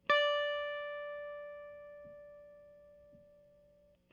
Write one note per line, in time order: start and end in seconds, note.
0.10 3.85 D5